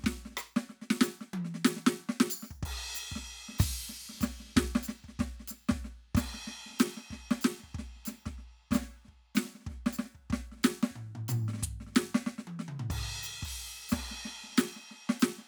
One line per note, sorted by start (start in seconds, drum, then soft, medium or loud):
0.01 kick medium
0.01 snare soft
0.06 snare soft
0.06 snare loud
0.26 snare soft
0.31 snare soft
0.36 snare soft
0.36 high tom loud
0.36 percussion loud
0.57 snare loud
0.70 snare soft
0.82 snare soft
0.91 snare loud
1.01 snare loud
1.01 percussion loud
1.21 snare soft
1.34 high tom loud
1.45 snare soft
1.55 snare medium
1.65 snare loud
1.65 percussion loud
1.77 snare medium
1.87 snare loud
2.00 snare soft
2.09 snare medium
2.21 snare loud
2.31 percussion loud
2.43 snare soft
2.51 kick soft
2.63 kick medium
2.63 ride loud
2.95 percussion loud
3.12 kick medium
3.12 snare medium
3.49 snare soft
3.53 snare soft
3.59 kick loud
3.59 snare soft
3.59 percussion loud
3.59 crash loud
3.63 snare soft
3.89 snare soft
4.09 snare soft
4.14 snare soft
4.18 snare soft
4.21 kick medium
4.21 snare soft
4.21 percussion loud
4.23 snare loud
4.40 snare soft
4.45 snare soft
4.49 snare soft
4.53 snare soft
4.57 kick loud
4.57 snare loud
4.76 snare loud
4.83 percussion loud
4.89 snare medium
5.04 kick soft
5.09 snare soft
5.20 kick medium
5.20 snare medium
5.40 snare soft
5.48 snare soft
5.48 percussion loud
5.69 kick medium
5.69 snare loud
5.85 snare soft
6.15 kick loud
6.15 snare loud
6.15 percussion loud
6.15 ride loud
6.34 snare soft
6.47 snare soft
6.66 snare soft
6.71 snare soft
6.74 snare soft
6.80 snare soft
6.80 snare loud
6.80 percussion loud
6.85 snare soft
6.97 snare soft
7.11 kick soft
7.11 snare soft
7.31 snare loud
7.42 snare loud
7.42 percussion medium
7.60 snare soft
7.64 kick soft
7.64 snare soft
7.75 kick medium
7.79 snare medium
7.96 snare soft
8.06 snare medium
8.06 percussion loud
8.12 snare soft
8.26 kick medium
8.26 snare medium
8.39 snare soft
8.71 kick medium
8.71 snare loud
8.71 percussion loud
8.75 snare loud
8.87 snare soft
8.90 snare soft
9.05 kick soft
9.05 snare soft
9.09 snare soft
9.11 snare soft
9.35 snare medium
9.35 percussion loud
9.37 snare loud
9.45 snare soft
9.49 snare soft
9.55 snare soft
9.60 snare soft
9.65 kick medium
9.65 snare soft
9.68 snare soft
9.70 snare soft
9.87 snare loud
9.93 percussion loud
9.99 snare medium
10.04 snare soft
10.15 kick soft
10.31 kick medium
10.31 snare medium
10.52 snare soft
10.56 snare soft
10.60 snare soft
10.60 percussion loud
10.65 snare loud
10.83 snare loud
10.91 kick soft
10.96 floor tom medium
11.16 floor tom medium
11.29 floor tom loud
11.29 percussion loud
11.49 snare medium
11.54 snare medium
11.58 snare soft
11.63 kick medium
11.63 floor tom loud
11.81 snare soft
11.87 snare soft
11.92 snare soft
11.92 percussion medium
11.97 snare loud
12.15 snare loud
12.22 kick soft
12.27 snare medium
12.39 snare medium
12.48 high tom medium
12.60 snare medium
12.69 mid tom loud
12.80 floor tom loud
12.91 kick medium
12.91 ride loud
13.24 percussion loud
13.43 kick medium
13.43 crash loud
13.90 kick medium
13.90 snare loud
13.90 percussion loud
13.90 ride loud
14.11 snare soft
14.25 snare medium
14.44 snare soft
14.49 snare soft
14.52 snare soft
14.55 snare soft
14.55 percussion loud
14.58 snare loud
14.76 snare soft
14.91 snare soft
15.10 snare loud
15.20 snare loud
15.20 percussion medium
15.39 snare soft